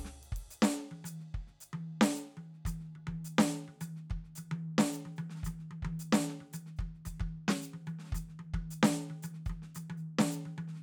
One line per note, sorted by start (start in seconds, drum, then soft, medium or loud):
0.05 snare soft
0.22 snare soft
0.22 ride soft
0.32 kick medium
0.36 ride medium
0.50 hi-hat pedal medium
0.62 snare loud
0.75 snare soft
0.76 snare soft
0.91 high tom medium
1.04 hi-hat pedal medium
1.04 high tom medium
1.20 snare soft
1.34 kick soft
1.47 snare soft
1.60 hi-hat pedal medium
1.73 high tom medium
2.01 snare loud
2.15 hi-hat pedal medium
2.37 high tom medium
2.53 snare soft
2.65 kick medium
2.65 hi-hat pedal medium
2.65 high tom medium
2.80 snare soft
2.83 snare soft
2.95 high tom soft
3.07 kick soft
3.07 high tom medium
3.25 hi-hat pedal medium
3.38 snare loud
3.38 high tom medium
3.52 snare soft
3.68 high tom soft
3.81 hi-hat pedal medium
3.81 high tom medium
3.96 snare soft
4.10 kick medium
4.10 high tom medium
4.24 snare soft
4.35 hi-hat pedal medium
4.35 high tom medium
4.51 high tom medium
4.78 snare loud
4.78 high tom medium
4.92 hi-hat pedal medium
5.05 high tom medium
5.16 hi-hat pedal soft
5.16 high tom medium
5.30 snare soft
5.35 snare soft
5.39 snare soft
5.42 kick soft
5.42 snare soft
5.42 hi-hat pedal medium
5.46 high tom medium
5.59 snare soft
5.71 high tom medium
5.82 kick soft
5.82 high tom medium
5.99 hi-hat pedal medium
6.12 snare loud
6.12 high tom medium
6.28 snare soft
6.40 high tom soft
6.53 hi-hat pedal medium
6.53 high tom medium
6.66 snare soft
6.76 kick medium
6.76 hi-hat pedal soft
6.81 high tom medium
6.94 snare soft
7.05 kick soft
7.05 hi-hat pedal medium
7.05 high tom medium
7.20 kick medium
7.20 high tom medium
7.48 snare loud
7.48 high tom medium
7.62 hi-hat pedal medium
7.73 high tom medium
7.86 hi-hat pedal soft
7.86 high tom medium
7.99 snare soft
8.03 snare soft
8.05 snare soft
8.08 snare soft
8.12 kick medium
8.12 hi-hat pedal medium
8.12 high tom medium
8.29 snare soft
8.39 high tom medium
8.54 kick medium
8.54 high tom medium
8.71 hi-hat pedal medium
8.83 snare loud
8.83 high tom medium
9.00 snare soft
9.10 high tom soft
9.22 hi-hat pedal medium
9.22 high tom medium
9.34 snare soft
9.46 kick medium
9.46 hi-hat pedal soft
9.46 high tom medium
9.62 snare soft
9.67 snare soft
9.75 hi-hat pedal medium
9.75 high tom medium
9.90 high tom medium
9.97 hi-hat pedal soft
10.19 snare loud
10.19 high tom medium
10.31 hi-hat pedal medium
10.45 high tom medium
10.58 high tom medium
10.68 snare soft
10.72 snare soft
10.75 snare soft